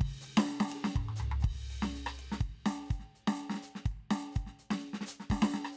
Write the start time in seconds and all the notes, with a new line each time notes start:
0.01 kick, crash
0.07 kick
0.21 hi-hat pedal
0.27 ride
0.37 snare
0.50 ride
0.60 snare
0.69 hi-hat pedal, ride
0.84 snare
0.96 kick, mid tom
1.02 kick
1.05 kick
1.09 mid tom
1.16 floor tom, hi-hat pedal
1.32 floor tom
1.40 kick, hi-hat pedal, floor tom
1.45 crash
1.51 kick
1.56 kick
1.57 kick
1.71 open hi-hat
1.82 snare, hi-hat pedal
1.96 closed hi-hat
2.06 cross-stick
2.13 hi-hat pedal
2.19 closed hi-hat
2.32 snare
2.41 kick, closed hi-hat
2.49 kick
2.66 closed hi-hat, snare
2.86 hi-hat pedal
2.91 closed hi-hat, kick
3.00 snare
3.15 closed hi-hat
3.28 snare
3.41 closed hi-hat
3.50 snare
3.54 snare
3.63 hi-hat pedal
3.75 snare
3.86 kick, closed hi-hat
3.91 kick
4.11 closed hi-hat, snare
4.32 closed hi-hat, hi-hat pedal
4.36 kick
4.45 kick, snare
4.59 closed hi-hat
4.71 snare
4.82 closed hi-hat
4.88 closed hi-hat
4.93 snare
5.01 snare
5.06 closed hi-hat, hi-hat pedal
5.20 snare
5.30 kick, snare
5.42 snare
5.54 snare
5.65 cross-stick
5.72 hi-hat pedal